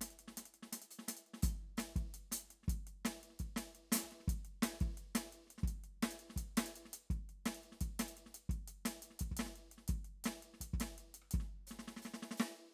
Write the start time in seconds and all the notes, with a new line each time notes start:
0.01 snare, closed hi-hat
0.11 closed hi-hat
0.19 closed hi-hat
0.28 snare
0.37 snare, closed hi-hat
0.46 closed hi-hat
0.54 closed hi-hat
0.63 snare
0.73 snare, closed hi-hat
0.82 closed hi-hat
0.91 closed hi-hat
0.99 snare
1.08 snare, closed hi-hat
1.17 closed hi-hat
1.26 closed hi-hat
1.34 snare
1.43 open hi-hat, kick, snare
1.77 snare, closed hi-hat, hi-hat pedal
1.96 kick, closed hi-hat
2.14 closed hi-hat
2.32 closed hi-hat, snare
2.51 closed hi-hat
2.63 snare
2.68 kick, closed hi-hat
2.87 closed hi-hat
3.05 snare, closed hi-hat
3.23 closed hi-hat
3.30 snare
3.39 kick, closed hi-hat
3.56 snare, closed hi-hat
3.75 closed hi-hat
3.92 closed hi-hat, snare
3.96 snare
3.99 snare
4.03 kick, snare
4.11 snare, closed hi-hat
4.20 snare
4.28 kick, snare, closed hi-hat
4.45 closed hi-hat
4.62 snare, closed hi-hat
4.81 kick, closed hi-hat
4.97 closed hi-hat
5.15 snare, closed hi-hat
5.33 closed hi-hat
5.47 snare, closed hi-hat
5.58 snare
5.63 kick
5.68 closed hi-hat
5.84 closed hi-hat
6.03 snare, closed hi-hat
6.11 closed hi-hat
6.19 closed hi-hat
6.30 snare
6.36 kick, closed hi-hat
6.57 snare, closed hi-hat
6.64 snare, closed hi-hat
6.76 closed hi-hat
6.85 snare
6.93 closed hi-hat
7.10 kick, closed hi-hat
7.29 closed hi-hat
7.46 snare, closed hi-hat
7.55 closed hi-hat
7.63 closed hi-hat
7.72 snare
7.81 kick, closed hi-hat
7.99 snare, closed hi-hat
8.08 closed hi-hat
8.17 closed hi-hat
8.26 snare
8.34 closed hi-hat
8.49 kick, closed hi-hat
8.68 closed hi-hat
8.85 snare, closed hi-hat
9.02 closed hi-hat
9.11 snare
9.19 kick, closed hi-hat
9.32 kick
9.37 snare, closed hi-hat
9.46 snare
9.56 closed hi-hat
9.72 closed hi-hat
9.78 snare
9.88 kick, closed hi-hat
10.05 closed hi-hat
10.24 snare, closed hi-hat
10.43 closed hi-hat
10.54 snare
10.61 kick, closed hi-hat
10.74 kick
10.80 snare, closed hi-hat
10.98 closed hi-hat
11.14 closed hi-hat
11.22 cross-stick
11.31 kick, closed hi-hat
11.40 snare
11.67 snare, hi-hat pedal
11.79 snare
11.88 snare
11.97 snare
12.02 snare, hi-hat pedal
12.14 snare
12.22 snare
12.31 snare
12.37 snare, hi-hat pedal